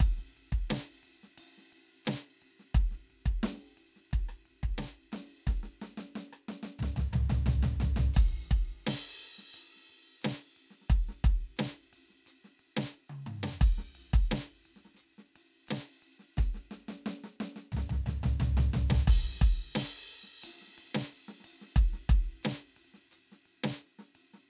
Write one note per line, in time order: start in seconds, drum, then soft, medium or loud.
0.01 kick loud
0.01 ride medium
0.18 snare soft
0.37 ride soft
0.53 kick medium
0.70 snare loud
0.70 ride medium
1.04 ride medium
1.24 snare soft
1.38 ride medium
1.58 snare soft
1.73 ride soft
2.06 snare loud
2.06 hi-hat pedal medium
2.06 ride medium
2.43 ride soft
2.60 snare soft
2.75 kick loud
2.75 ride soft
2.92 snare soft
3.11 ride soft
3.26 kick medium
3.44 snare loud
3.44 ride medium
3.78 ride medium
3.97 snare soft
4.12 kick medium
4.12 ride soft
4.29 cross-stick medium
4.46 ride soft
4.64 kick medium
4.79 snare medium
4.79 ride medium
5.13 snare medium
5.13 ride medium
5.48 kick medium
5.48 snare medium
5.64 snare medium
5.82 snare medium
5.98 snare medium
6.16 snare medium
6.16 hi-hat pedal medium
6.33 cross-stick medium
6.49 snare medium
6.64 snare medium
6.79 snare medium
6.79 floor tom medium
6.79 hi-hat pedal medium
6.97 snare medium
6.97 floor tom loud
7.13 cross-stick medium
7.13 floor tom loud
7.30 snare medium
7.30 floor tom loud
7.47 snare medium
7.47 floor tom loud
7.52 hi-hat pedal medium
7.63 snare medium
7.63 floor tom loud
7.81 snare medium
7.81 floor tom loud
7.93 hi-hat pedal soft
7.97 snare medium
7.97 floor tom loud
8.15 kick loud
8.15 ride medium
8.15 percussion loud
8.27 ride soft
8.52 kick loud
8.87 snare loud
8.87 crash loud
9.18 ride soft
9.39 snare soft
9.54 hi-hat pedal medium
9.54 ride medium
9.77 snare soft
9.90 ride soft
10.22 snare loud
10.22 hi-hat pedal medium
10.22 ride medium
10.57 ride soft
10.67 ride soft
10.71 snare soft
10.82 snare soft
10.90 kick loud
10.90 ride soft
11.09 snare soft
11.25 kick loud
11.25 ride soft
11.58 snare loud
11.58 hi-hat pedal medium
11.58 ride medium
11.94 ride medium
12.10 snare soft
12.27 hi-hat pedal medium
12.27 ride soft
12.45 snare soft
12.60 ride soft
12.77 snare loud
12.87 hi-hat pedal medium
12.95 ride soft
13.10 high tom medium
13.27 mid tom loud
13.44 snare loud
13.60 kick loud
13.60 crash medium
13.79 snare medium
13.96 ride medium
14.14 kick loud
14.32 snare loud
14.32 ride medium
14.66 ride soft
14.77 snare soft
14.77 ride soft
14.86 snare soft
14.95 snare soft
14.95 hi-hat pedal medium
15.01 ride soft
15.19 snare soft
15.36 ride medium
15.68 snare loud
15.68 hi-hat pedal soft
15.68 ride medium
16.03 ride soft
16.20 snare soft
16.38 kick medium
16.38 snare medium
16.55 snare soft
16.72 snare medium
16.89 snare medium
17.07 snare loud
17.07 hi-hat pedal medium
17.24 snare medium
17.41 snare loud
17.57 snare medium
17.73 floor tom medium
17.73 hi-hat pedal medium
17.77 snare medium
17.90 snare medium
17.90 floor tom medium
18.07 snare medium
18.07 floor tom loud
18.24 snare medium
18.24 floor tom loud
18.41 snare medium
18.41 floor tom loud
18.41 hi-hat pedal soft
18.58 snare medium
18.58 floor tom loud
18.74 snare loud
18.74 floor tom loud
18.88 snare loud
18.88 floor tom loud
18.88 hi-hat pedal soft
19.08 kick loud
19.08 hi-hat pedal soft
19.08 ride medium
19.08 crash loud
19.42 kick loud
19.76 snare loud
19.76 crash loud
20.24 snare soft
20.43 hi-hat pedal medium
20.43 ride loud
20.62 snare soft
20.68 snare soft
20.79 ride medium
20.86 ride soft
20.95 snare loud
21.02 hi-hat pedal medium
21.13 ride soft
21.29 snare medium
21.41 snare soft
21.45 ride medium
21.53 ride soft
21.62 snare soft
21.77 kick loud
21.77 ride soft
21.94 snare soft
22.10 kick loud
22.10 ride medium
22.44 snare loud
22.44 hi-hat pedal medium
22.44 ride medium
22.77 ride medium
22.85 ride soft
22.94 snare soft
23.12 hi-hat pedal medium
23.12 ride soft
23.19 ride soft
23.33 snare soft
23.46 ride soft
23.64 snare loud
23.76 hi-hat pedal medium
23.82 ride soft
23.99 snare soft
24.16 ride medium
24.34 snare soft